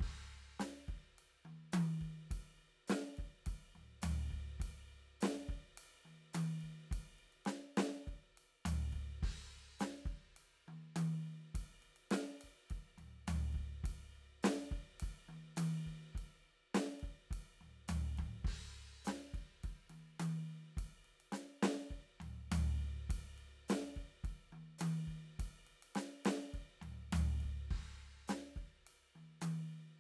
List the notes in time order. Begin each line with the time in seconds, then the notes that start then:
0.01 kick, crash
0.60 snare, hi-hat pedal, ride
0.89 kick, ride
1.19 ride
1.46 high tom
1.73 hi-hat pedal, high tom, ride
2.02 kick, ride
2.31 kick, ride
2.57 ride
2.88 snare, hi-hat pedal, ride
3.18 kick, ride
3.47 kick, ride
3.76 floor tom
4.02 floor tom, hi-hat pedal, ride
4.31 kick
4.60 kick, ride
5.21 snare, hi-hat pedal, ride
5.49 kick, ride
5.78 ride
6.06 high tom
6.34 hi-hat pedal, high tom, ride
6.62 kick, ride
6.92 kick, ride
7.19 ride
7.33 ride
7.46 snare, hi-hat pedal, ride
7.78 snare, ride
8.08 kick, ride
8.38 ride
8.66 floor tom, hi-hat pedal, ride
8.93 kick, ride
9.23 kick, crash
9.80 snare, hi-hat pedal, ride
10.06 kick, ride
10.37 ride
10.69 high tom
10.97 hi-hat pedal, high tom, ride
11.55 kick, ride
11.83 ride
11.97 ride
12.12 snare, hi-hat pedal, ride
12.42 kick, ride
12.71 kick, ride
12.98 floor tom, ride
13.28 floor tom, hi-hat pedal, ride
13.53 kick, ride
13.84 kick, ride
14.43 snare, hi-hat pedal, ride
14.72 kick
15.00 kick, ride
15.29 high tom
15.57 hi-hat pedal, high tom, ride
15.87 kick
16.16 kick, ride
16.75 snare, hi-hat pedal, ride
17.00 kick, ride
17.31 kick, ride
17.61 floor tom
17.89 floor tom, hi-hat pedal, ride
18.18 kick, floor tom, ride
18.45 kick, crash
19.05 snare, hi-hat pedal, ride
19.34 kick, ride
19.64 kick, ride
19.90 high tom, ride
20.20 hi-hat pedal, high tom, ride
20.78 kick, ride
21.05 ride
21.21 ride
21.33 snare, hi-hat pedal, ride
21.63 snare, ride
21.91 kick
22.21 floor tom, ride
22.52 floor tom, hi-hat pedal, ride
22.81 ride
23.10 kick, ride
23.38 ride
23.69 snare, hi-hat pedal, ride
23.97 kick, ride
24.25 kick, ride
24.53 high tom
24.79 hi-hat pedal, high tom, ride
25.06 kick, ride
25.40 kick, ride
25.67 ride
25.83 ride
25.96 snare, hi-hat pedal, ride
26.26 snare, ride
26.54 kick, ride
26.82 floor tom, ride
27.13 floor tom, hi-hat pedal, ride
27.41 kick, ride
27.71 kick, crash
28.28 snare, hi-hat pedal, ride
28.57 kick, ride
28.87 ride
29.16 high tom
29.42 hi-hat pedal, high tom, ride